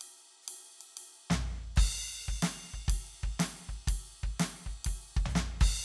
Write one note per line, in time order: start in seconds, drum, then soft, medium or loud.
0.01 ride medium
0.43 hi-hat pedal soft
0.48 ride loud
0.81 ride medium
0.97 ride loud
1.30 snare loud
1.30 floor tom loud
1.62 kick soft
1.75 kick loud
1.75 cross-stick soft
1.75 crash loud
2.28 kick medium
2.35 hi-hat pedal soft
2.42 snare loud
2.42 ride loud
2.74 kick soft
2.88 kick loud
2.88 ride loud
3.23 kick medium
3.39 snare loud
3.39 ride loud
3.69 kick medium
3.88 kick medium
3.88 ride loud
4.23 kick medium
4.40 snare loud
4.40 ride loud
4.66 kick medium
4.85 kick medium
4.85 ride loud
5.17 kick medium
5.26 floor tom loud
5.26 hi-hat pedal medium
5.35 snare loud
5.61 kick loud
5.61 crash loud